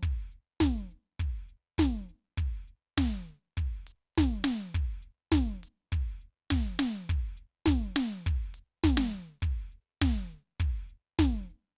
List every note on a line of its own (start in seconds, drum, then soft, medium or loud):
0.01 kick medium
0.01 hi-hat pedal soft
0.32 closed hi-hat medium
0.61 kick medium
0.61 snare loud
0.91 closed hi-hat medium
1.20 kick medium
1.20 closed hi-hat soft
1.49 closed hi-hat medium
1.79 kick medium
1.79 snare loud
2.10 closed hi-hat medium
2.38 kick medium
2.38 closed hi-hat soft
2.68 closed hi-hat medium
2.98 kick medium
2.98 snare loud
3.29 closed hi-hat medium
3.58 kick medium
3.58 closed hi-hat soft
3.87 open hi-hat loud
4.16 kick medium
4.16 snare loud
4.16 hi-hat pedal medium
4.45 open hi-hat loud
4.45 snare loud
4.73 kick medium
4.73 hi-hat pedal medium
5.03 closed hi-hat loud
5.32 kick medium
5.32 snare loud
5.64 closed hi-hat loud
5.93 kick medium
5.93 closed hi-hat soft
6.22 closed hi-hat medium
6.51 kick medium
6.51 snare loud
6.80 open hi-hat loud
6.80 snare loud
7.08 kick medium
7.08 hi-hat pedal soft
7.38 closed hi-hat loud
7.67 kick medium
7.67 snare loud
7.97 closed hi-hat loud
7.97 snare loud
8.25 kick medium
8.25 closed hi-hat soft
8.25 hi-hat pedal soft
8.55 closed hi-hat loud
8.84 kick medium
8.84 snare loud
8.98 snare loud
9.10 closed hi-hat loud
9.10 kick soft
9.41 kick medium
9.41 closed hi-hat soft
9.41 hi-hat pedal medium
9.46 crash soft
9.72 closed hi-hat medium
10.02 kick medium
10.02 snare loud
10.32 closed hi-hat medium
10.59 kick medium
10.59 closed hi-hat soft
10.90 closed hi-hat medium
11.19 kick medium
11.19 snare loud
11.50 closed hi-hat soft